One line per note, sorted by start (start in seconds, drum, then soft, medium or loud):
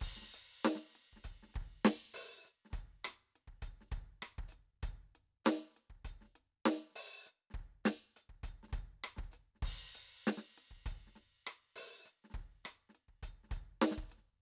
0.01 kick soft
0.01 crash medium
0.07 kick soft
0.16 snare soft
0.21 snare soft
0.27 snare soft
0.34 closed hi-hat medium
0.65 open hi-hat loud
0.65 snare medium
0.65 hi-hat pedal medium
0.75 snare soft
0.95 closed hi-hat soft
1.12 kick soft
1.12 snare soft
1.24 closed hi-hat medium
1.24 kick soft
1.32 kick soft
1.43 snare soft
1.49 snare soft
1.53 kick soft
1.53 snare soft
1.53 closed hi-hat soft
1.62 kick soft
1.65 kick soft
1.85 closed hi-hat medium
1.85 snare loud
2.14 open hi-hat loud
2.44 hi-hat pedal soft
2.65 snare soft
2.70 closed hi-hat soft
2.70 kick soft
2.70 snare soft
2.79 kick soft
3.04 closed hi-hat loud
3.04 cross-stick medium
3.04 hi-hat pedal soft
3.35 closed hi-hat soft
3.47 kick soft
3.62 closed hi-hat medium
3.62 kick soft
3.81 snare soft
3.86 snare soft
3.91 closed hi-hat medium
3.91 kick soft
3.98 kick soft
4.22 closed hi-hat medium
4.22 cross-stick medium
4.38 kick soft
4.48 hi-hat pedal medium
4.52 closed hi-hat soft
4.83 closed hi-hat medium
4.83 kick soft
4.90 kick soft
5.15 closed hi-hat soft
5.45 closed hi-hat medium
5.45 snare loud
5.45 hi-hat pedal medium
5.76 closed hi-hat soft
5.90 kick soft
6.04 closed hi-hat medium
6.04 kick soft
6.12 kick soft
6.21 snare soft
6.24 snare soft
6.35 closed hi-hat soft
6.65 closed hi-hat medium
6.65 snare loud
6.92 open hi-hat loud
6.92 snare soft
7.26 hi-hat pedal medium
7.50 kick soft
7.50 snare soft
7.54 closed hi-hat soft
7.84 closed hi-hat medium
7.84 snare medium
7.84 hi-hat pedal soft
8.16 closed hi-hat soft
8.29 kick soft
8.43 closed hi-hat medium
8.43 kick soft
8.43 snare soft
8.53 kick soft
8.63 snare soft
8.68 snare soft
8.71 closed hi-hat medium
8.71 kick soft
8.71 snare soft
8.73 snare soft
8.80 kick soft
9.04 closed hi-hat medium
9.04 cross-stick medium
9.16 kick soft
9.16 snare soft
9.24 kick soft
9.31 closed hi-hat medium
9.31 hi-hat pedal soft
9.55 snare soft
9.62 kick medium
9.62 crash medium
9.69 kick soft
9.95 closed hi-hat medium
10.00 cross-stick soft
10.27 open hi-hat medium
10.27 snare medium
10.27 hi-hat pedal soft
10.37 snare soft
10.58 closed hi-hat soft
10.71 kick soft
10.86 closed hi-hat medium
10.86 kick soft
10.94 kick soft
11.07 snare soft
11.15 snare soft
11.15 closed hi-hat soft
11.47 closed hi-hat medium
11.47 cross-stick medium
11.76 open hi-hat loud
12.05 closed hi-hat soft
12.05 hi-hat pedal medium
12.24 snare soft
12.30 kick soft
12.30 snare soft
12.34 snare soft
12.34 closed hi-hat soft
12.64 closed hi-hat medium
12.64 cross-stick medium
12.64 hi-hat pedal medium
12.89 snare soft
12.95 closed hi-hat soft
13.08 kick soft
13.22 closed hi-hat medium
13.22 kick soft
13.43 snare soft
13.48 snare soft
13.49 closed hi-hat medium
13.49 kick soft
13.49 snare soft
13.57 kick soft
13.81 closed hi-hat medium
13.81 snare loud
13.91 snare soft
13.97 kick soft
14.09 closed hi-hat soft
14.09 hi-hat pedal soft
14.17 snare soft